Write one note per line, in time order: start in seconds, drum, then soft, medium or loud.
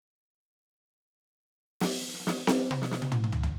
1.80 snare loud
1.80 ride loud
2.01 snare soft
2.08 snare soft
2.13 snare soft
2.20 snare soft
2.24 snare soft
2.27 snare loud
2.37 snare soft
2.42 snare soft
2.47 snare loud
2.57 snare soft
2.63 snare soft
2.67 snare soft
2.67 high tom loud
2.82 snare medium
2.91 snare loud
3.02 open hi-hat soft
3.02 high tom loud
3.12 mid tom loud
3.24 mid tom loud
3.32 floor tom loud
3.43 floor tom loud